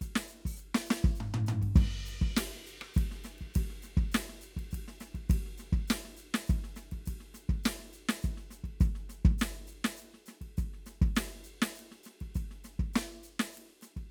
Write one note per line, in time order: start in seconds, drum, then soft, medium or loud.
0.01 kick soft
0.01 hi-hat pedal medium
0.01 ride soft
0.15 snare loud
0.28 hi-hat pedal medium
0.28 ride soft
0.45 open hi-hat medium
0.45 kick medium
0.57 hi-hat pedal medium
0.57 ride soft
0.74 snare loud
0.86 hi-hat pedal medium
0.90 snare loud
1.04 kick loud
1.15 hi-hat pedal medium
1.20 floor tom loud
1.34 floor tom loud
1.46 floor tom loud
1.46 hi-hat pedal medium
1.62 kick soft
1.62 ride soft
1.75 kick loud
1.75 hi-hat pedal soft
1.75 crash medium
2.05 hi-hat pedal medium
2.05 ride soft
2.21 kick medium
2.36 snare loud
2.36 hi-hat pedal medium
2.36 ride loud
2.46 snare soft
2.50 snare soft
2.66 hi-hat pedal medium
2.66 ride soft
2.81 cross-stick medium
2.94 kick medium
2.94 hi-hat pedal medium
2.98 ride medium
3.11 snare soft
3.24 snare soft
3.24 hi-hat pedal medium
3.24 ride soft
3.38 kick soft
3.38 ride soft
3.54 kick medium
3.54 hi-hat pedal medium
3.54 ride medium
3.70 snare soft
3.82 snare soft
3.82 hi-hat pedal medium
3.82 ride soft
3.97 kick medium
3.97 ride soft
4.12 snare loud
4.12 hi-hat pedal medium
4.12 ride medium
4.29 snare soft
4.41 hi-hat pedal medium
4.41 ride soft
4.56 kick medium
4.56 ride soft
4.71 kick medium
4.71 hi-hat pedal medium
4.71 ride medium
4.88 snare soft
5.00 snare soft
5.00 hi-hat pedal medium
5.00 ride soft
5.14 kick soft
5.14 ride soft
5.29 kick medium
5.29 hi-hat pedal medium
5.29 ride medium
5.46 snare soft
5.57 snare soft
5.57 hi-hat pedal medium
5.57 ride soft
5.73 kick medium
5.73 ride soft
5.87 snare loud
5.87 hi-hat pedal medium
5.87 ride medium
6.05 snare soft
6.16 hi-hat pedal medium
6.16 ride soft
6.34 snare loud
6.47 kick medium
6.47 hi-hat pedal medium
6.47 ride medium
6.64 snare soft
6.76 snare soft
6.76 hi-hat pedal medium
6.76 ride soft
6.91 kick soft
6.91 ride soft
7.05 kick medium
7.05 hi-hat pedal medium
7.05 ride medium
7.20 snare soft
7.34 snare soft
7.34 hi-hat pedal medium
7.34 ride soft
7.49 kick medium
7.49 ride soft
7.63 snare loud
7.63 hi-hat pedal medium
7.63 ride medium
7.79 snare soft
7.81 snare soft
7.93 hi-hat pedal medium
8.09 snare loud
8.22 kick medium
8.22 hi-hat pedal medium
8.22 ride soft
8.37 snare soft
8.50 snare soft
8.50 hi-hat pedal medium
8.50 ride soft
8.64 kick soft
8.64 ride soft
8.80 kick loud
8.80 hi-hat pedal medium
8.80 ride soft
8.95 snare soft
9.09 snare soft
9.09 hi-hat pedal medium
9.09 ride soft
9.25 kick loud
9.25 ride soft
9.38 snare loud
9.38 hi-hat pedal medium
9.38 ride medium
9.67 hi-hat pedal medium
9.72 ride soft
9.84 snare loud
9.97 hi-hat pedal medium
10.02 ride soft
10.14 snare soft
10.26 snare soft
10.26 hi-hat pedal medium
10.26 ride soft
10.41 kick soft
10.41 ride soft
10.57 kick medium
10.57 hi-hat pedal medium
10.57 ride soft
10.73 snare soft
10.86 snare soft
10.86 hi-hat pedal medium
10.86 ride soft
11.01 kick loud
11.01 ride soft
11.16 snare loud
11.16 hi-hat pedal medium
11.16 ride medium
11.27 snare soft
11.31 snare soft
11.44 hi-hat pedal medium
11.44 ride soft
11.62 snare loud
11.75 hi-hat pedal medium
11.79 ride soft
11.91 snare soft
12.03 snare soft
12.03 hi-hat pedal medium
12.03 ride soft
12.20 kick soft
12.20 ride soft
12.34 kick medium
12.34 hi-hat pedal medium
12.34 ride soft
12.51 snare soft
12.64 snare soft
12.64 hi-hat pedal medium
12.64 ride soft
12.79 kick medium
12.79 ride soft
12.93 snare loud
12.93 hi-hat pedal medium
13.07 snare soft
13.23 hi-hat pedal medium
13.23 ride soft
13.39 snare loud
13.53 hi-hat pedal medium
13.57 ride medium
13.69 snare soft
13.81 snare soft
13.81 hi-hat pedal medium
13.81 ride soft
13.96 kick soft
13.96 ride soft